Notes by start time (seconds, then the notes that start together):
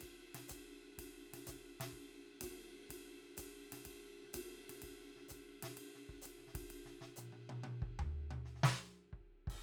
0.01 kick, hi-hat pedal, ride
0.35 snare, ride
0.49 kick, hi-hat pedal, ride
0.99 kick, ride
1.34 snare, ride
1.47 kick, snare, hi-hat pedal, ride
1.81 snare, ride
1.93 kick
2.42 kick, hi-hat pedal, ride
2.90 kick, hi-hat pedal, ride
3.23 snare
3.38 kick, hi-hat pedal, ride
3.73 snare, ride
3.86 kick, ride
4.25 snare
4.34 kick, hi-hat pedal, ride
4.70 snare, ride
4.83 kick, ride
5.17 snare
5.29 kick, snare, hi-hat pedal, ride
5.63 snare, ride
5.78 ride
5.96 snare
6.10 kick
6.22 hi-hat pedal, ride
6.38 snare
6.48 snare
6.55 kick, ride
6.66 hi-hat pedal
6.71 ride
6.86 snare
7.02 snare
7.17 hi-hat pedal, high tom
7.33 high tom
7.50 high tom
7.64 high tom
7.83 kick
8.00 floor tom
8.31 high tom
8.46 snare
8.56 snare
8.59 snare
8.64 snare
9.13 kick
9.48 kick, crash